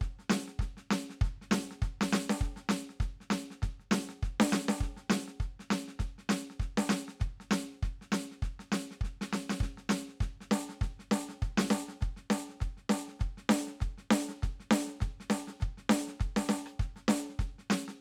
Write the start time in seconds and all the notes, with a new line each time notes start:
0.01 kick, snare
0.19 snare
0.30 snare
0.48 snare
0.59 kick, snare
0.77 snare
0.91 snare
1.10 snare
1.21 kick, snare
1.41 snare
1.51 snare
1.71 snare
1.82 kick, snare
2.01 snare
2.13 snare
2.29 snare
2.41 kick, snare
2.56 snare
2.69 snare
2.89 snare
3.00 kick, snare
3.20 snare
3.30 kick, snare
3.50 snare
3.62 kick, snare
3.80 snare
3.91 snare
4.09 snare
4.23 kick, snare
4.40 snare
4.52 snare
4.68 snare
4.80 kick, snare
4.97 snare
5.10 snare
5.28 snare
5.40 kick, snare
5.59 snare
5.70 snare
5.88 snare
5.99 kick, snare
6.18 snare
6.29 snare
6.50 snare
6.60 kick, snare
6.77 snare
6.89 snare
7.08 snare
7.20 kick, snare
7.40 snare
7.51 snare
7.72 snare
7.83 kick, snare
8.01 snare
8.12 snare
8.31 snare
8.42 kick, snare
8.59 snare
8.72 snare
8.91 snare
9.01 kick, snare
9.21 snare
9.33 kick, snare
9.50 snare
9.60 kick, snare
9.77 snare
9.89 snare
10.08 snare
10.20 kick, snare
10.41 snare
10.51 snare
10.69 snare
10.81 kick, snare
10.99 snare
11.11 snare
11.29 snare
11.42 kick, snare
11.58 snare
11.70 snare
11.88 snare
12.01 kick, snare
12.16 snare
12.30 snare
12.49 snare
12.60 kick, snare
12.77 snare
12.89 snare
13.08 snare
13.19 kick, snare
13.37 snare
13.49 snare
13.67 snare
13.80 kick, snare
13.98 snare
14.11 snare
14.29 snare
14.42 kick, snare
14.60 snare
14.71 snare
14.87 snare
15.00 kick, snare
15.20 snare
15.30 snare
15.47 snare
15.60 kick, snare
15.77 snare
15.89 snare
16.08 snare
16.20 kick, snare
16.36 snare
16.49 snare
16.66 cross-stick
16.79 kick, snare
16.96 snare
17.08 snare
17.29 snare
17.39 kick, snare
17.58 snare
17.70 snare
17.88 snare